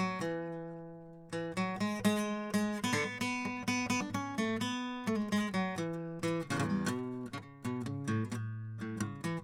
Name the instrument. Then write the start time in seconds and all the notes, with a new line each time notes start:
acoustic guitar
0.00 F#3
0.23 E3
1.34 E3
1.58 F#3
1.82 G#3
2.06 G#3
2.56 G#3
2.85 B3
2.94 D3 B3
3.23 B3
3.69 B3
3.92 B3
4.02 D4
4.16 C#4
4.40 A3
4.63 B3
5.09 A3
5.18 G#3
5.34 G#3
5.55 F#3
5.78 E3
6.25 E3
6.52 E2 C#3
6.62 C#3
6.88 B2
7.35 D3
7.66 B2
7.88 C#3
8.09 A2
8.34 A2
8.81 A2
9.03 C#3
9.26 E3